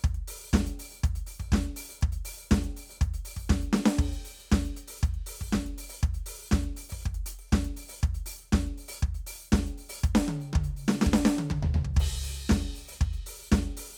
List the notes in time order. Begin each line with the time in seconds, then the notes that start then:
0.01 closed hi-hat, kick, hi-hat pedal
0.15 closed hi-hat
0.28 open hi-hat
0.39 open hi-hat
0.52 kick, snare, hi-hat pedal
0.67 closed hi-hat
0.80 open hi-hat
0.91 open hi-hat
1.00 hi-hat pedal
1.04 kick, closed hi-hat
1.16 closed hi-hat
1.27 open hi-hat
1.40 open hi-hat, kick
1.53 kick, snare, hi-hat pedal
1.64 closed hi-hat
1.77 open hi-hat
1.89 open hi-hat
1.98 closed hi-hat, hi-hat pedal
2.03 kick
2.13 closed hi-hat
2.26 open hi-hat
2.38 open hi-hat
2.49 kick, snare, hi-hat pedal
2.65 closed hi-hat
2.77 open hi-hat
2.90 open hi-hat
2.97 hi-hat pedal
3.02 kick, closed hi-hat
3.14 closed hi-hat
3.26 open hi-hat
3.37 open hi-hat, kick
3.49 kick, snare, hi-hat pedal
3.62 closed hi-hat
3.74 snare
3.86 snare
3.95 hi-hat pedal
3.99 kick, crash
4.13 closed hi-hat
4.25 open hi-hat
4.39 open hi-hat
4.49 kick, snare, hi-hat pedal
4.65 closed hi-hat
4.77 closed hi-hat
4.88 open hi-hat
5.00 kick, hi-hat pedal
5.04 closed hi-hat
5.15 closed hi-hat
5.27 open hi-hat
5.40 kick, open hi-hat
5.53 kick, snare, hi-hat pedal
5.67 closed hi-hat
5.78 open hi-hat
5.90 open hi-hat
5.98 hi-hat pedal
6.04 kick, closed hi-hat
6.15 closed hi-hat
6.27 open hi-hat
6.40 open hi-hat
6.50 kick, snare, hi-hat pedal
6.64 closed hi-hat
6.77 open hi-hat
6.90 open hi-hat, kick
7.03 kick, hi-hat pedal, open hi-hat
7.15 closed hi-hat
7.27 open hi-hat
7.40 open hi-hat
7.52 kick, snare, hi-hat pedal
7.65 closed hi-hat
7.77 open hi-hat
7.89 open hi-hat
7.98 hi-hat pedal
8.04 kick, closed hi-hat
8.15 closed hi-hat
8.27 open hi-hat
8.40 open hi-hat
8.49 hi-hat pedal
8.53 kick, snare
8.67 closed hi-hat
8.78 open hi-hat
8.89 open hi-hat
8.97 hi-hat pedal
9.03 kick, closed hi-hat
9.15 closed hi-hat
9.27 open hi-hat
9.41 open hi-hat
9.49 hi-hat pedal
9.53 kick, snare
9.67 closed hi-hat
9.74 kick
9.78 open hi-hat
9.90 open hi-hat
9.99 hi-hat pedal
10.04 closed hi-hat, kick
10.16 snare
10.29 high tom
10.41 open hi-hat
10.50 hi-hat pedal, high tom
10.56 kick
10.64 closed hi-hat
10.77 open hi-hat
10.89 snare
11.01 snare, hi-hat pedal
11.07 kick
11.14 snare
11.26 snare
11.39 high tom
11.48 kick, hi-hat pedal, high tom
11.63 floor tom
11.75 floor tom
11.85 kick
11.95 kick, hi-hat pedal
12.00 crash
12.24 open hi-hat
12.39 open hi-hat
12.47 snare, hi-hat pedal
12.52 kick
12.62 closed hi-hat
12.76 open hi-hat
12.89 open hi-hat
12.95 hi-hat pedal
13.02 kick, closed hi-hat
13.14 closed hi-hat
13.27 open hi-hat
13.40 open hi-hat
13.49 snare, hi-hat pedal
13.53 kick
13.66 closed hi-hat
13.78 open hi-hat
13.92 open hi-hat